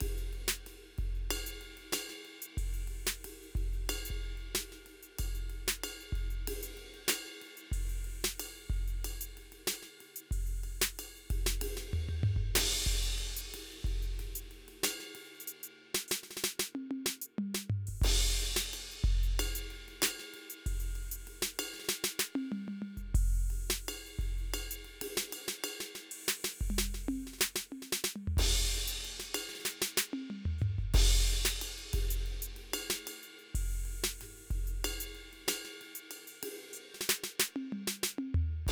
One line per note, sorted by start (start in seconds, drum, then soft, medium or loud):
0.01 kick medium
0.01 ride loud
0.18 closed hi-hat medium
0.33 ride soft
0.48 snare loud
0.67 snare soft
0.67 ride medium
0.83 closed hi-hat soft
0.98 kick medium
0.98 ride soft
1.15 closed hi-hat soft
1.31 ride bell loud
1.47 closed hi-hat loud
1.61 ride soft
1.77 ride soft
1.93 snare loud
1.93 ride bell loud
2.09 snare soft
2.25 ride soft
2.42 closed hi-hat loud
2.58 kick medium
2.58 crash medium
2.74 closed hi-hat medium
2.88 ride soft
3.07 snare loud
3.25 ride medium
3.43 closed hi-hat soft
3.56 kick medium
3.56 ride soft
3.74 closed hi-hat soft
3.90 ride bell loud
4.05 closed hi-hat loud
4.11 kick soft
4.24 ride soft
4.38 ride soft
4.55 snare loud
4.55 ride medium
4.72 snare soft
4.86 ride soft
5.03 closed hi-hat medium
5.19 kick medium
5.19 ride bell medium
5.35 closed hi-hat medium
5.50 ride soft
5.68 snare loud
5.84 ride bell loud
6.01 closed hi-hat medium
6.13 kick medium
6.13 ride soft
6.31 closed hi-hat medium
6.48 ride loud
6.63 closed hi-hat loud
6.77 ride soft
6.94 ride soft
7.08 snare loud
7.08 ride bell loud
7.26 snare soft
7.42 ride soft
7.57 closed hi-hat medium
7.72 kick medium
7.72 crash loud
7.90 closed hi-hat medium
8.05 ride soft
8.24 snare loud
8.40 ride bell loud
8.58 closed hi-hat soft
8.70 kick medium
8.70 ride soft
8.88 closed hi-hat medium
9.05 ride bell medium
9.21 closed hi-hat loud
9.37 ride soft
9.52 ride medium
9.67 snare loud
9.67 ride bell medium
9.83 snare soft
10.01 ride medium
10.16 closed hi-hat loud
10.31 kick medium
10.31 crash medium
10.47 closed hi-hat medium
10.64 ride bell soft
10.82 snare loud
10.99 ride bell medium
11.17 closed hi-hat soft
11.31 kick medium
11.31 ride medium
11.47 snare loud
11.62 ride loud
11.77 snare medium
11.94 floor tom loud
12.09 floor tom medium
12.24 floor tom loud
12.37 kick medium
12.56 snare loud
12.56 ride loud
12.73 snare soft
12.87 kick medium
12.87 crash medium
13.03 closed hi-hat medium
13.19 ride soft
13.37 closed hi-hat loud
13.54 ride medium
13.72 closed hi-hat soft
13.85 kick medium
13.85 ride soft
14.03 closed hi-hat medium
14.19 snare soft
14.19 ride medium
14.19 floor tom soft
14.35 closed hi-hat loud
14.51 ride soft
14.68 ride medium
14.84 snare loud
14.84 ride bell loud
15.00 snare soft
15.15 ride medium
15.25 closed hi-hat soft
15.35 closed hi-hat soft
15.40 closed hi-hat loud
15.48 closed hi-hat loud
15.63 closed hi-hat loud
15.95 snare loud
16.08 snare loud
16.08 hi-hat pedal loud
16.24 snare soft
16.31 snare medium
16.37 snare medium
16.44 snare loud
16.60 snare loud
16.75 high tom loud
16.91 high tom loud
17.06 snare loud
17.22 closed hi-hat loud
17.39 mid tom loud
17.55 snare loud
17.70 floor tom loud
17.87 kick soft
17.87 crash medium
18.02 kick medium
18.02 ride loud
18.08 hi-hat pedal soft
18.22 closed hi-hat soft
18.39 ride soft
18.57 snare loud
18.74 ride bell medium
18.92 closed hi-hat medium
19.04 kick medium
19.04 ride soft
19.23 closed hi-hat medium
19.40 ride bell loud
19.55 closed hi-hat loud
19.71 ride soft
19.88 ride soft
20.02 snare loud
20.02 ride bell loud
20.20 snare soft
20.34 ride medium
20.50 closed hi-hat loud
20.67 kick medium
20.67 crash medium
20.80 closed hi-hat medium
20.96 ride bell soft
21.12 closed hi-hat loud
21.27 ride medium
21.42 snare loud
21.59 ride bell loud
21.74 snare soft
21.80 snare soft
21.85 snare soft
21.89 snare loud
22.04 snare loud
22.19 snare loud
22.36 high tom loud
22.52 mid tom loud
22.68 mid tom medium
22.82 mid tom medium
22.97 kick soft
22.97 closed hi-hat soft
23.15 kick medium
23.15 crash loud
23.34 closed hi-hat soft
23.51 ride medium
23.70 snare loud
23.89 ride bell loud
24.07 closed hi-hat medium
24.19 kick medium
24.19 ride soft
24.38 closed hi-hat soft
24.54 ride bell loud
24.71 closed hi-hat loud
24.85 ride soft
25.02 ride loud
25.17 snare loud
25.33 ride bell medium
25.48 snare loud
25.64 ride bell loud
25.81 snare medium
25.95 snare medium
26.12 crash loud
26.28 snare loud
26.44 snare loud
26.61 kick medium
26.70 mid tom medium
26.78 snare loud
26.94 snare medium
27.09 high tom loud
27.27 snare soft
27.34 snare soft
27.39 snare soft
27.41 snare loud
27.56 snare loud
27.72 high tom medium
27.82 snare soft
27.93 snare loud
28.04 snare loud
28.16 mid tom medium
28.28 floor tom medium
28.37 kick medium
28.37 ride loud
28.58 closed hi-hat soft
28.73 ride soft
28.88 closed hi-hat loud
29.05 ride bell soft
29.20 snare medium
29.35 ride bell loud
29.49 snare soft
29.55 snare soft
29.60 snare soft
29.65 snare medium
29.65 hi-hat pedal loud
29.82 snare loud
29.98 snare loud
30.14 high tom loud
30.30 mid tom medium
30.46 floor tom loud
30.59 hi-hat pedal soft
30.59 floor tom loud
30.79 kick soft
30.79 hi-hat pedal soft
30.94 kick medium
30.94 ride loud
31.11 closed hi-hat soft
31.18 closed hi-hat soft
31.28 ride medium
31.45 snare loud
31.62 ride bell medium
31.78 closed hi-hat medium
31.94 kick medium
31.94 ride loud
32.11 closed hi-hat loud
32.26 ride soft
32.42 closed hi-hat loud
32.57 ride medium
32.74 ride bell loud
32.90 snare loud
33.07 ride bell medium
33.23 closed hi-hat medium
33.39 closed hi-hat soft
33.55 kick medium
33.55 crash loud
33.71 closed hi-hat medium
33.86 ride soft
34.04 snare loud
34.21 snare soft
34.21 ride medium
34.21 floor tom soft
34.37 closed hi-hat soft
34.51 kick medium
34.51 ride soft
34.67 closed hi-hat medium
34.85 ride bell loud
35.01 closed hi-hat loud
35.15 ride soft
35.33 ride soft
35.48 snare loud
35.48 ride bell loud
35.65 snare soft
35.81 ride soft
35.95 closed hi-hat loud
36.11 ride bell medium
36.28 open hi-hat medium
36.43 ride loud
36.73 hi-hat pedal loud
36.95 snare soft
37.01 snare medium
37.09 snare loud
37.24 snare medium
37.40 snare loud
37.40 hi-hat pedal medium
37.56 high tom loud
37.73 mid tom loud
37.88 snare loud
38.03 snare loud
38.03 hi-hat pedal loud
38.19 high tom loud
38.35 floor tom loud
38.67 kick medium
38.67 ride loud